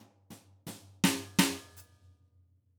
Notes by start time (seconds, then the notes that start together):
0.00 floor tom
0.30 snare, floor tom
0.67 snare, floor tom
1.04 snare, floor tom
1.39 snare, floor tom
1.77 hi-hat pedal